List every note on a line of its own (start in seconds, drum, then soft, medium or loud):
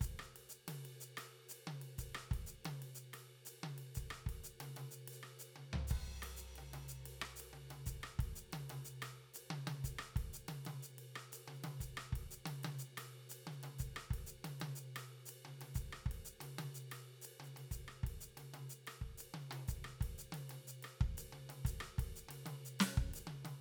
0.01 kick soft
0.01 hi-hat pedal medium
0.01 ride medium
0.19 cross-stick medium
0.19 hi-hat pedal soft
0.36 ride medium
0.49 hi-hat pedal medium
0.68 high tom medium
0.68 ride medium
0.85 ride soft
1.01 hi-hat pedal medium
1.17 cross-stick medium
1.17 ride medium
1.49 hi-hat pedal medium
1.49 ride medium
1.67 hi-hat pedal soft
1.67 high tom medium
1.82 ride soft
1.98 kick soft
1.98 hi-hat pedal medium
1.98 ride medium
2.15 cross-stick medium
2.31 kick soft
2.31 ride soft
2.47 hi-hat pedal medium
2.65 high tom medium
2.65 ride medium
2.82 ride medium
2.95 hi-hat pedal medium
3.13 cross-stick soft
3.13 hi-hat pedal soft
3.13 ride medium
3.45 hi-hat pedal medium
3.45 ride medium
3.64 hi-hat pedal soft
3.64 high tom medium
3.78 ride soft
3.95 kick soft
3.95 hi-hat pedal medium
3.95 ride medium
4.11 cross-stick medium
4.26 kick soft
4.26 ride medium
4.44 hi-hat pedal medium
4.60 high tom medium
4.60 ride medium
4.77 high tom medium
4.77 ride medium
4.91 hi-hat pedal medium
5.08 ride medium
5.13 hi-hat pedal soft
5.23 cross-stick soft
5.39 hi-hat pedal medium
5.39 ride soft
5.56 high tom medium
5.73 floor tom medium
5.87 kick soft
5.87 hi-hat pedal medium
5.87 crash soft
6.22 cross-stick medium
6.22 ride medium
6.37 hi-hat pedal medium
6.56 high tom medium
6.56 ride soft
6.74 high tom medium
6.74 ride soft
6.88 hi-hat pedal medium
7.06 hi-hat pedal soft
7.06 ride medium
7.22 cross-stick medium
7.36 hi-hat pedal medium
7.40 ride medium
7.53 high tom medium
7.71 high tom medium
7.71 ride soft
7.86 kick soft
7.86 hi-hat pedal medium
7.86 ride soft
8.03 cross-stick medium
8.19 kick medium
8.19 ride medium
8.36 hi-hat pedal medium
8.53 high tom medium
8.53 ride medium
8.70 high tom medium
8.70 ride medium
8.85 hi-hat pedal medium
9.02 cross-stick medium
9.02 ride medium
9.34 hi-hat pedal medium
9.34 ride medium
9.51 high tom medium
9.67 high tom loud
9.67 ride soft
9.84 kick soft
9.84 hi-hat pedal medium
9.84 ride soft
9.99 cross-stick medium
10.16 kick medium
10.16 ride medium
10.33 hi-hat pedal medium
10.48 high tom medium
10.48 ride medium
10.65 high tom medium
10.65 ride medium
10.83 hi-hat pedal medium
10.98 ride medium
11.16 cross-stick medium
11.32 hi-hat pedal medium
11.32 ride medium
11.48 high tom medium
11.54 hi-hat pedal soft
11.64 high tom medium
11.64 ride medium
11.80 kick soft
11.80 hi-hat pedal medium
11.80 ride soft
11.97 cross-stick medium
12.13 kick soft
12.13 ride medium
12.31 hi-hat pedal medium
12.46 high tom medium
12.46 ride medium
12.64 high tom medium
12.64 ride medium
12.79 hi-hat pedal medium
12.98 cross-stick medium
12.98 ride medium
13.29 hi-hat pedal medium
13.29 ride medium
13.47 high tom medium
13.51 hi-hat pedal soft
13.63 high tom medium
13.63 ride soft
13.79 kick soft
13.79 hi-hat pedal medium
13.79 ride soft
13.96 cross-stick medium
14.11 kick soft
14.11 ride medium
14.27 hi-hat pedal medium
14.44 high tom medium
14.44 ride medium
14.60 high tom medium
14.60 ride soft
14.76 hi-hat pedal medium
14.96 cross-stick medium
14.96 ride medium
15.26 hi-hat pedal medium
15.26 ride medium
15.45 high tom medium
15.61 high tom medium
15.61 ride medium
15.75 kick soft
15.75 hi-hat pedal medium
15.75 ride soft
15.93 cross-stick medium
16.06 kick soft
16.11 ride medium
16.25 hi-hat pedal medium
16.41 high tom medium
16.41 ride medium
16.59 high tom medium
16.59 ride medium
16.75 hi-hat pedal medium
16.92 cross-stick medium
16.92 ride medium
17.22 hi-hat pedal medium
17.22 ride medium
17.40 hi-hat pedal soft
17.40 high tom medium
17.56 high tom soft
17.56 ride soft
17.71 kick soft
17.71 hi-hat pedal medium
17.71 ride soft
17.88 cross-stick soft
18.03 kick soft
18.03 ride medium
18.21 hi-hat pedal medium
18.37 high tom medium
18.37 ride medium
18.54 high tom medium
18.54 ride soft
18.70 hi-hat pedal medium
18.87 cross-stick medium
18.87 ride medium
19.01 kick soft
19.18 hi-hat pedal medium
19.18 ride medium
19.34 high tom medium
19.40 hi-hat pedal soft
19.51 high tom medium
19.51 ride medium
19.68 kick soft
19.68 hi-hat pedal medium
19.68 ride soft
19.85 cross-stick medium
20.01 kick soft
20.01 ride medium
20.18 hi-hat pedal medium
20.32 high tom medium
20.32 ride medium
20.50 high tom medium
20.50 ride medium
20.67 hi-hat pedal medium
20.83 cross-stick medium
20.83 ride medium
21.01 kick medium
21.17 hi-hat pedal medium
21.17 ride medium
21.33 high tom medium
21.49 high tom medium
21.49 ride medium
21.65 kick soft
21.65 hi-hat pedal medium
21.65 ride medium
21.81 cross-stick medium
21.98 kick soft
21.98 ride medium
22.16 hi-hat pedal medium
22.29 high tom medium
22.29 ride medium
22.46 high tom medium
22.46 ride medium
22.65 hi-hat pedal medium
22.80 snare medium
22.80 ride soft
22.88 hi-hat pedal soft
22.97 kick medium
23.14 hi-hat pedal medium
23.14 ride medium
23.27 high tom medium
23.45 high tom medium
23.45 ride medium